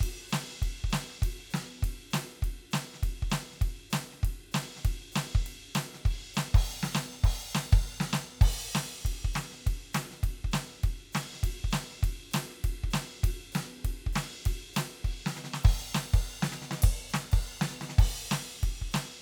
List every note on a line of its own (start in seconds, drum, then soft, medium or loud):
0.01 kick medium
0.01 ride medium
0.29 snare loud
0.29 hi-hat pedal medium
0.29 ride medium
0.50 snare soft
0.62 kick medium
0.62 ride medium
0.84 kick medium
0.90 snare loud
0.90 hi-hat pedal medium
0.90 ride medium
1.10 cross-stick soft
1.22 kick medium
1.22 ride medium
1.51 snare loud
1.51 hi-hat pedal medium
1.51 ride medium
1.83 kick medium
1.83 ride medium
2.11 snare loud
2.11 hi-hat pedal medium
2.11 ride medium
2.43 kick medium
2.43 ride medium
2.71 snare loud
2.71 hi-hat pedal medium
2.71 ride medium
2.94 snare soft
3.03 kick medium
3.03 ride medium
3.23 kick medium
3.30 snare loud
3.30 hi-hat pedal medium
3.30 ride medium
3.52 snare soft
3.62 kick medium
3.62 ride medium
3.91 snare loud
3.91 hi-hat pedal medium
3.91 ride medium
4.12 snare soft
4.23 kick medium
4.23 ride medium
4.52 snare loud
4.52 hi-hat pedal medium
4.52 ride medium
4.77 snare soft
4.85 kick medium
4.85 ride medium
5.12 snare loud
5.12 hi-hat pedal medium
5.12 ride medium
5.35 kick medium
5.47 ride medium
5.75 snare loud
5.75 hi-hat pedal medium
5.75 ride medium
5.94 snare soft
6.06 kick medium
6.06 ride medium
6.34 snare loud
6.34 hi-hat pedal medium
6.55 kick loud
6.55 crash loud
6.83 snare loud
6.93 snare loud
6.93 hi-hat pedal medium
7.13 snare soft
7.24 kick loud
7.24 crash loud
7.50 hi-hat pedal medium
7.55 snare loud
7.73 kick loud
7.73 crash medium
8.00 snare loud
8.09 hi-hat pedal medium
8.13 snare loud
8.41 kick loud
8.41 crash loud
8.70 hi-hat pedal medium
8.75 snare loud
8.75 ride medium
8.93 snare soft
9.05 kick medium
9.05 ride medium
9.25 kick medium
9.34 snare loud
9.34 hi-hat pedal medium
9.34 ride medium
9.52 snare soft
9.67 kick medium
9.67 ride medium
9.93 snare loud
9.93 hi-hat pedal medium
9.93 ride medium
10.11 snare soft
10.23 kick medium
10.23 ride medium
10.45 kick medium
10.52 snare loud
10.52 hi-hat pedal medium
10.52 ride medium
10.68 snare soft
10.84 kick medium
10.84 ride medium
11.13 snare loud
11.13 hi-hat pedal medium
11.13 ride medium
11.34 snare soft
11.43 kick medium
11.43 ride medium
11.64 kick medium
11.71 snare loud
11.71 hi-hat pedal medium
11.71 ride medium
11.91 snare soft
12.03 kick medium
12.03 ride medium
12.31 snare loud
12.31 hi-hat pedal medium
12.31 ride loud
12.51 cross-stick soft
12.64 kick medium
12.64 ride medium
12.84 kick medium
12.91 snare loud
12.91 hi-hat pedal medium
12.91 ride medium
13.24 kick medium
13.24 ride loud
13.52 snare loud
13.52 hi-hat pedal medium
13.52 ride medium
13.85 kick medium
13.85 ride medium
14.07 kick medium
14.13 snare loud
14.13 hi-hat pedal medium
14.13 ride medium
14.46 kick medium
14.46 ride medium
14.74 snare loud
14.74 hi-hat pedal medium
14.74 ride loud
15.05 kick medium
15.05 ride medium
15.26 snare loud
15.34 snare medium
15.34 hi-hat pedal medium
15.44 snare medium
15.54 snare medium
15.64 kick loud
15.64 crash loud
15.94 snare loud
15.94 hi-hat pedal medium
16.14 kick loud
16.14 crash medium
16.43 snare loud
16.52 snare medium
16.52 hi-hat pedal medium
16.62 snare medium
16.71 snare loud
16.83 kick loud
16.83 crash loud
17.10 hi-hat pedal medium
17.14 snare loud
17.32 kick loud
17.32 crash medium
17.61 snare loud
17.69 snare soft
17.69 hi-hat pedal medium
17.81 snare medium
17.90 snare medium
17.99 kick loud
17.99 crash loud
18.29 snare loud
18.29 hi-hat pedal medium
18.29 ride medium
18.45 snare soft
18.63 kick medium
18.63 ride medium
18.82 kick soft
18.92 snare loud
18.92 hi-hat pedal medium
18.92 ride medium
19.05 cross-stick soft